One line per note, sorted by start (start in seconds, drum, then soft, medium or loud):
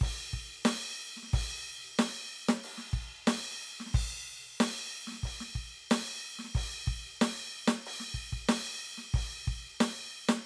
0.01 kick medium
0.01 crash loud
0.33 kick soft
0.65 cross-stick medium
0.65 snare loud
0.65 crash loud
1.00 hi-hat pedal soft
1.16 snare soft
1.23 snare soft
1.27 snare soft
1.33 kick medium
1.33 crash loud
1.99 snare loud
1.99 crash loud
2.07 snare soft
2.49 snare loud
2.64 crash medium
2.78 snare soft
2.93 kick medium
3.27 snare loud
3.27 crash loud
3.35 cross-stick soft
3.44 snare soft
3.61 hi-hat pedal medium
3.80 snare soft
3.86 snare soft
3.90 kick medium
3.90 snare soft
3.90 crash loud
4.60 snare loud
4.60 crash loud
5.07 snare soft
5.11 snare soft
5.14 cross-stick soft
5.14 snare soft
5.23 kick medium
5.23 crash medium
5.40 snare soft
5.55 kick medium
5.90 snare loud
5.90 crash loud
6.39 snare soft
6.44 snare soft
6.48 snare soft
6.55 kick medium
6.55 crash loud
6.87 kick medium
7.21 snare loud
7.21 crash loud
7.27 cross-stick medium
7.68 snare loud
7.86 crash loud
8.00 snare soft
8.14 kick soft
8.32 kick medium
8.49 snare loud
8.49 crash loud
8.98 snare soft
9.04 cross-stick soft
9.10 kick medium
9.10 snare soft
9.15 crash loud
9.47 kick medium
9.80 snare loud
9.80 crash loud
9.93 snare soft
10.29 snare loud
10.37 snare soft